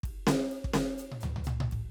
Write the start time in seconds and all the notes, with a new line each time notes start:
0.03 kick, ride
0.27 snare, ride
0.51 ride
0.64 kick
0.74 snare, ride
0.98 hi-hat pedal, ride
1.12 high tom
1.20 floor tom, hi-hat pedal
1.36 floor tom
1.44 hi-hat pedal, high tom
1.60 high tom
1.71 kick, ride